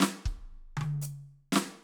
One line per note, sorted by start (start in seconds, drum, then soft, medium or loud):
0.00 snare loud
0.02 snare loud
0.02 hi-hat pedal medium
0.25 kick medium
0.77 high tom loud
0.81 high tom loud
1.02 hi-hat pedal loud
1.52 snare loud
1.56 snare loud
1.61 snare medium
1.64 snare soft
1.67 snare soft